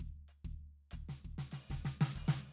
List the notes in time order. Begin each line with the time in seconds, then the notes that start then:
0.00 kick
0.28 percussion
0.45 kick
0.91 kick, percussion
1.09 snare
1.25 kick
1.38 snare
1.52 snare, percussion
1.70 kick, snare
1.85 snare
2.01 snare
2.15 kick, percussion
2.28 snare